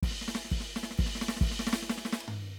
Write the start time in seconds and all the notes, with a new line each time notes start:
0.03 kick, crash
0.11 snare
0.21 snare
0.28 snare
0.35 snare
0.44 snare
0.50 kick, crash
0.60 snare
0.76 snare
0.83 snare
0.91 snare
0.98 kick, hi-hat pedal, crash
1.06 snare
1.15 snare
1.21 snare
1.28 snare
1.36 snare
1.41 kick, crash
1.51 snare
1.59 snare
1.67 snare
1.73 snare
1.80 snare, hi-hat pedal
1.90 snare
1.97 snare
2.05 snare
2.12 snare
2.20 floor tom
2.28 floor tom